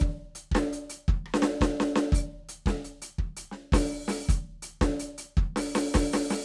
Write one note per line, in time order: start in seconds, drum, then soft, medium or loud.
0.01 kick loud
0.01 hi-hat pedal medium
0.35 closed hi-hat loud
0.52 kick loud
0.52 cross-stick medium
0.52 snare loud
0.73 closed hi-hat loud
0.90 closed hi-hat loud
1.08 kick loud
1.26 cross-stick medium
1.34 snare loud
1.42 snare loud
1.61 kick loud
1.61 snare loud
1.80 snare loud
1.96 snare loud
2.12 open hi-hat loud
2.12 kick loud
2.49 closed hi-hat loud
2.66 kick loud
2.66 snare loud
2.85 closed hi-hat medium
3.02 closed hi-hat loud
3.19 kick medium
3.37 closed hi-hat loud
3.52 snare medium
3.73 open hi-hat loud
3.73 kick loud
3.73 snare loud
4.08 open hi-hat loud
4.08 snare loud
4.26 closed hi-hat loud
4.26 kick loud
4.26 hi-hat pedal soft
4.63 closed hi-hat loud
4.81 kick loud
4.81 snare loud
5.00 closed hi-hat loud
5.18 closed hi-hat loud
5.37 kick loud
5.56 open hi-hat loud
5.56 snare loud
5.75 open hi-hat loud
5.75 snare loud
5.94 open hi-hat loud
5.94 kick loud
5.94 snare loud
6.13 open hi-hat loud
6.13 snare loud
6.30 open hi-hat loud
6.30 snare loud